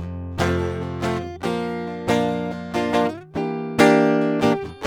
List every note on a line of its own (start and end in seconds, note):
0.00 0.40 F2
0.00 0.12 C3
0.00 0.11 F3
0.40 0.82 F2
0.40 0.83 C3
0.40 0.84 F3
0.40 0.85 A3
0.40 0.54 C4
0.40 0.98 F4
0.83 1.06 F2
0.83 1.06 C3
0.83 1.04 F3
0.83 1.03 A3
1.03 1.24 C3
1.03 1.23 F3
1.03 1.18 A3
1.03 1.30 C4
1.03 1.40 F4
1.07 1.33 F2
1.18 1.33 G#3
1.43 2.08 F3
1.43 1.89 A#3
1.43 1.54 D4
1.89 2.09 A#3
1.89 2.09 D4
1.89 2.01 F4
2.10 2.50 F3
2.10 2.53 A#3
2.10 2.32 D4
2.10 2.28 F4
2.31 2.54 D4
2.31 2.53 F4
2.52 2.66 F3
2.52 2.77 A#3
2.52 2.73 D4
2.52 2.71 F4
2.76 2.95 F3
2.76 2.95 A#3
2.76 2.96 D4
2.76 2.97 F4
2.95 3.10 F3
2.95 3.17 A#3
2.95 3.19 D4
2.95 3.20 F4
3.37 3.80 E3
3.37 3.81 A#3
3.37 3.49 D4
3.37 3.81 G4
3.80 4.45 E3
3.80 4.23 A#3
3.80 4.44 D4
3.80 4.44 G4
4.23 4.45 A#3
4.44 4.59 E3
4.44 4.60 A#3
4.44 4.58 D4
4.44 4.64 G4
4.64 4.77 A2
4.64 4.76 D3
4.64 4.87 G4